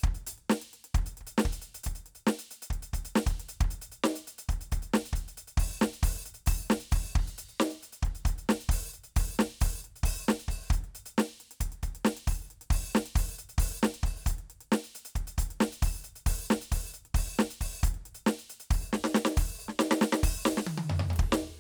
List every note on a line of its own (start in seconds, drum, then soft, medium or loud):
0.01 kick loud
0.01 hi-hat pedal soft
0.05 closed hi-hat soft
0.15 closed hi-hat soft
0.27 closed hi-hat loud
0.38 closed hi-hat soft
0.50 snare loud
0.62 closed hi-hat medium
0.74 closed hi-hat medium
0.85 closed hi-hat medium
0.95 kick loud
0.95 closed hi-hat medium
1.06 closed hi-hat medium
1.17 kick soft
1.17 closed hi-hat medium
1.27 closed hi-hat medium
1.38 snare loud
1.45 kick medium
1.53 closed hi-hat medium
1.62 closed hi-hat medium
1.75 closed hi-hat medium
1.84 closed hi-hat loud
1.84 kick medium
1.95 closed hi-hat medium
2.06 closed hi-hat medium
2.15 closed hi-hat medium
2.27 snare loud
2.39 closed hi-hat medium
2.51 closed hi-hat medium
2.62 closed hi-hat medium
2.71 kick medium
2.71 closed hi-hat medium
2.83 closed hi-hat medium
2.94 closed hi-hat medium
2.94 kick medium
3.05 closed hi-hat medium
3.16 snare loud
3.27 closed hi-hat medium
3.27 kick loud
3.40 closed hi-hat medium
3.49 closed hi-hat medium
3.61 kick loud
3.61 closed hi-hat medium
3.71 closed hi-hat medium
3.82 closed hi-hat medium
4.04 snare loud
4.16 closed hi-hat medium
4.27 closed hi-hat medium
4.39 closed hi-hat medium
4.49 closed hi-hat medium
4.49 kick loud
4.61 closed hi-hat medium
4.72 closed hi-hat medium
4.72 kick loud
4.83 closed hi-hat medium
4.94 snare loud
5.06 closed hi-hat medium
5.13 kick medium
5.28 closed hi-hat medium
5.38 closed hi-hat medium
5.58 open hi-hat loud
5.58 kick loud
5.73 hi-hat pedal soft
5.73 open hi-hat soft
5.82 snare loud
5.93 closed hi-hat soft
6.03 open hi-hat loud
6.03 kick loud
6.16 open hi-hat soft
6.22 closed hi-hat medium
6.22 hi-hat pedal soft
6.34 closed hi-hat medium
6.47 open hi-hat loud
6.47 kick loud
6.58 open hi-hat soft
6.66 snare loud
6.66 hi-hat pedal soft
6.80 closed hi-hat medium
6.92 open hi-hat loud
6.92 kick loud
7.05 open hi-hat medium
7.12 kick loud
7.12 hi-hat pedal soft
7.16 crash medium
7.28 closed hi-hat soft
7.38 closed hi-hat medium
7.49 closed hi-hat soft
7.60 snare loud
7.70 closed hi-hat soft
7.83 closed hi-hat medium
7.93 closed hi-hat medium
8.03 kick loud
8.03 closed hi-hat medium
8.15 closed hi-hat soft
8.25 closed hi-hat medium
8.25 kick loud
8.38 closed hi-hat medium
8.49 snare loud
8.61 closed hi-hat medium
8.69 open hi-hat loud
8.69 kick loud
8.85 open hi-hat soft
8.90 closed hi-hat medium
8.90 hi-hat pedal soft
9.04 closed hi-hat soft
9.16 open hi-hat loud
9.16 kick loud
9.28 open hi-hat soft
9.34 hi-hat pedal soft
9.39 snare loud
9.51 closed hi-hat soft
9.61 open hi-hat loud
9.61 kick loud
9.76 hi-hat pedal soft
9.76 open hi-hat soft
9.85 closed hi-hat medium
9.96 closed hi-hat soft
10.04 open hi-hat loud
10.04 kick loud
10.18 open hi-hat soft
10.23 hi-hat pedal soft
10.29 snare loud
10.40 closed hi-hat medium
10.48 open hi-hat medium
10.48 kick medium
10.64 open hi-hat soft
10.69 kick loud
10.69 hi-hat pedal soft
10.73 closed hi-hat medium
10.84 closed hi-hat soft
10.95 closed hi-hat medium
11.06 closed hi-hat medium
11.18 snare loud
11.29 closed hi-hat soft
11.40 closed hi-hat medium
11.51 closed hi-hat medium
11.61 kick medium
11.61 closed hi-hat loud
11.72 closed hi-hat medium
11.83 closed hi-hat medium
11.83 kick medium
11.95 closed hi-hat medium
12.05 snare loud
12.17 closed hi-hat medium
12.28 open hi-hat medium
12.28 kick loud
12.42 hi-hat pedal soft
12.42 open hi-hat medium
12.51 closed hi-hat medium
12.61 closed hi-hat medium
12.71 open hi-hat loud
12.71 kick loud
12.85 open hi-hat medium
12.92 snare loud
12.92 hi-hat pedal soft
13.06 closed hi-hat medium
13.16 open hi-hat loud
13.16 kick loud
13.29 open hi-hat medium
13.35 hi-hat pedal soft
13.39 closed hi-hat medium
13.49 closed hi-hat medium
13.58 open hi-hat loud
13.58 kick loud
13.72 open hi-hat soft
13.77 hi-hat pedal soft
13.83 snare loud
13.94 closed hi-hat medium
14.03 open hi-hat medium
14.03 kick loud
14.18 open hi-hat medium
14.23 closed hi-hat loud
14.23 kick loud
14.23 hi-hat pedal soft
14.39 closed hi-hat soft
14.50 closed hi-hat medium
14.61 closed hi-hat medium
14.72 snare loud
14.84 closed hi-hat soft
14.95 closed hi-hat medium
15.16 kick medium
15.16 closed hi-hat medium
15.27 closed hi-hat medium
15.38 closed hi-hat loud
15.38 kick loud
15.51 closed hi-hat medium
15.61 snare loud
15.72 closed hi-hat medium
15.83 open hi-hat loud
15.83 kick loud
15.95 open hi-hat medium
16.01 closed hi-hat medium
16.01 hi-hat pedal soft
16.16 closed hi-hat medium
16.26 open hi-hat loud
16.26 kick loud
16.39 open hi-hat soft
16.47 snare loud
16.47 hi-hat pedal soft
16.62 closed hi-hat medium
16.72 open hi-hat loud
16.72 kick loud
16.85 open hi-hat medium
16.90 hi-hat pedal soft
16.94 closed hi-hat medium
17.05 closed hi-hat soft
17.15 open hi-hat loud
17.15 kick loud
17.28 open hi-hat soft
17.36 snare loud
17.36 hi-hat pedal soft
17.51 closed hi-hat medium
17.61 open hi-hat loud
17.61 kick medium
17.74 open hi-hat medium
17.80 closed hi-hat loud
17.80 kick loud
17.80 hi-hat pedal soft
17.95 closed hi-hat soft
18.06 closed hi-hat medium
18.15 closed hi-hat medium
18.27 snare loud
18.39 closed hi-hat medium
18.50 closed hi-hat medium
18.71 open hi-hat medium
18.71 kick loud
18.87 hi-hat pedal soft
18.93 snare loud
19.04 snare loud
19.15 snare loud
19.25 snare loud
19.37 open hi-hat loud
19.37 kick loud
19.47 open hi-hat medium
19.59 open hi-hat medium
19.64 hi-hat pedal soft
19.69 snare medium
19.80 snare loud
19.91 snare loud
20.02 snare loud
20.13 snare loud
20.24 open hi-hat loud
20.24 kick loud
20.46 snare loud
20.58 snare loud
20.65 kick soft
20.65 high tom loud
20.78 high tom loud
20.90 floor tom loud
21.00 floor tom loud
21.11 floor tom loud
21.11 ride soft
21.17 kick loud
21.17 ride medium
21.33 snare loud